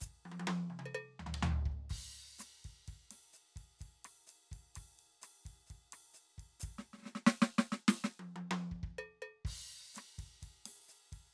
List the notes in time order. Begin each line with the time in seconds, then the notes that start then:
0.01 kick, hi-hat pedal
0.07 kick
0.26 high tom
0.32 high tom
0.40 high tom
0.47 high tom
0.70 mid tom
0.79 mid tom
0.86 percussion
0.95 percussion
1.20 floor tom
1.27 floor tom
1.35 floor tom
1.43 floor tom
1.66 kick
1.72 kick
1.90 kick, crash
2.39 cross-stick, snare, hi-hat pedal, ride
2.65 kick, ride
2.85 kick, hi-hat pedal, ride
2.93 kick
3.11 snare, ride
3.33 hi-hat pedal, ride
3.56 kick, ride
3.79 kick, hi-hat pedal, ride
4.05 cross-stick, snare, ride
4.27 hi-hat pedal, ride
4.52 kick, ride
4.75 kick, cross-stick, hi-hat pedal, ride
4.99 ride
5.22 cross-stick, hi-hat pedal, ride
5.46 kick, ride
5.67 kick, hi-hat pedal, ride
5.93 cross-stick, ride
6.14 hi-hat pedal, ride
6.38 kick, ride
6.60 kick, hi-hat pedal, ride
6.69 kick
6.79 snare
6.94 snare
6.98 snare
7.03 snare
7.06 snare
7.15 snare
7.27 snare
7.42 snare
7.59 snare
7.72 snare
7.88 snare
7.93 cross-stick
8.04 snare
8.20 high tom
8.36 high tom
8.51 high tom
8.72 kick
8.83 kick
8.99 percussion
9.22 percussion
9.45 kick, crash
9.55 kick
9.95 cross-stick, snare, hi-hat pedal, ride
10.19 kick, ride
10.24 kick
10.40 kick, hi-hat pedal, ride
10.66 snare, ride
10.89 hi-hat pedal, ride
11.13 kick, ride